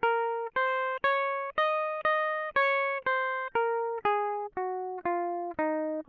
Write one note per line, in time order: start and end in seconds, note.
0.03 0.51 A#4
0.57 1.00 C5
1.04 1.54 C#5
1.58 2.05 D#5
2.05 2.54 D#5
2.57 3.03 C#5
3.07 3.51 C5
3.56 4.02 A#4
4.06 4.50 G#4
4.57 5.02 F#4
5.06 5.54 F4
5.59 6.04 D#4